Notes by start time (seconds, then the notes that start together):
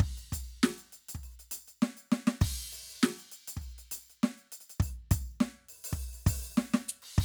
0.01 kick, percussion, crash
0.18 percussion
0.33 kick, percussion
0.50 percussion
0.64 snare
0.79 percussion
0.93 percussion
1.09 percussion
1.15 kick
1.24 percussion
1.32 percussion
1.40 percussion
1.52 percussion
1.68 percussion
1.83 snare
1.98 percussion
2.12 snare
2.28 snare
2.42 kick, crash
2.60 percussion
2.73 percussion
2.90 percussion
3.02 snare, percussion
3.19 percussion
3.32 percussion
3.48 percussion
3.57 kick
3.62 percussion
3.70 percussion
3.79 percussion
3.92 percussion
4.10 percussion
4.24 snare
4.38 percussion
4.53 percussion
4.61 percussion
4.70 percussion
4.80 kick, percussion
4.88 percussion
5.12 kick, percussion
5.41 snare
5.69 percussion
5.85 percussion
5.93 kick
6.01 percussion
6.14 percussion
6.27 kick, percussion
6.44 percussion
6.58 snare
6.74 snare
6.89 floor tom
7.03 crash
7.19 kick, crash